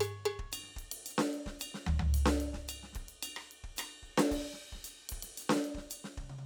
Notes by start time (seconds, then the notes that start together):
0.01 hi-hat pedal, percussion
0.26 percussion
0.39 kick
0.52 hi-hat pedal, ride bell
0.63 snare
0.69 snare
0.77 kick, ride
0.92 ride
1.06 hi-hat pedal, ride bell
1.18 snare
1.33 ride
1.46 kick, snare
1.60 hi-hat pedal, ride bell
1.75 snare
1.87 kick, floor tom
1.94 kick
2.00 floor tom
2.15 hi-hat pedal, ride
2.26 snare
2.41 ride
2.54 kick, snare
2.68 hi-hat pedal, ride bell
2.83 snare
2.93 kick, snare, ride
2.99 kick, snare
3.04 snare
3.08 snare, ride
3.12 snare
3.23 hi-hat pedal, ride bell
3.37 cross-stick
3.42 cross-stick
3.51 ride
3.64 kick
3.77 cross-stick, hi-hat pedal, ride bell
4.03 kick, ride
4.18 snare
4.32 kick, hi-hat pedal, crash
4.38 kick
4.53 snare
4.73 kick, snare
4.78 kick
4.85 hi-hat pedal, ride bell
5.09 kick, ride
5.18 kick
5.23 snare, ride
5.38 hi-hat pedal, ride bell
5.50 snare
5.56 snare
5.65 ride
5.75 kick, snare
5.80 kick
5.90 hi-hat pedal, ride bell
6.04 snare
6.18 kick, high tom
6.23 kick
6.30 high tom
6.39 high tom